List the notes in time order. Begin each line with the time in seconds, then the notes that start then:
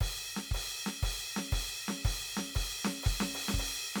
0.01 kick, crash
0.36 snare
0.51 kick, crash
0.57 kick
0.86 snare
1.03 kick, crash
1.36 snare
1.52 kick, crash
1.88 snare
2.05 kick, crash
2.37 snare
2.55 kick, crash
2.85 snare
3.03 kick, crash
3.20 snare
3.34 crash
3.48 snare
3.54 kick
3.58 kick, crash
3.96 snare